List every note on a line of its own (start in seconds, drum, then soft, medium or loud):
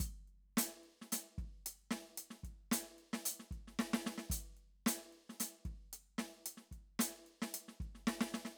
0.05 closed hi-hat medium
0.05 kick soft
0.27 closed hi-hat soft
0.57 closed hi-hat loud
0.57 snare medium
0.83 closed hi-hat soft
1.01 snare soft
1.12 closed hi-hat loud
1.12 snare medium
1.38 kick soft
1.38 closed hi-hat soft
1.66 closed hi-hat loud
1.91 snare medium
2.17 closed hi-hat medium
2.30 snare soft
2.43 kick soft
2.43 closed hi-hat soft
2.71 closed hi-hat loud
2.71 snare medium
2.98 closed hi-hat soft
3.13 snare medium
3.25 closed hi-hat loud
3.39 snare soft
3.51 kick soft
3.51 closed hi-hat soft
3.67 snare soft
3.79 snare medium
3.93 snare medium
4.06 snare medium
4.18 snare soft
4.30 closed hi-hat loud
4.30 kick soft
4.57 closed hi-hat soft
4.86 closed hi-hat loud
4.86 snare medium
5.12 closed hi-hat soft
5.29 snare soft
5.40 closed hi-hat loud
5.40 snare soft
5.65 kick soft
5.65 closed hi-hat soft
5.93 closed hi-hat medium
6.18 snare medium
6.46 closed hi-hat loud
6.57 snare soft
6.71 kick soft
6.71 closed hi-hat soft
6.99 closed hi-hat loud
6.99 snare medium
7.26 closed hi-hat soft
7.42 snare medium
7.54 closed hi-hat loud
7.68 snare soft
7.80 kick soft
7.80 closed hi-hat soft
7.95 snare soft
8.07 snare medium
8.21 snare medium
8.34 snare medium
8.45 snare soft